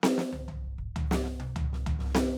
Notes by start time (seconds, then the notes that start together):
0.00 snare
0.03 snare
0.18 snare
0.33 floor tom
0.48 floor tom
0.64 kick
0.78 kick
0.96 floor tom
1.06 hi-hat pedal
1.11 snare
1.24 snare
1.40 high tom
1.56 floor tom
1.73 snare
1.86 floor tom
1.99 snare
2.04 snare
2.15 snare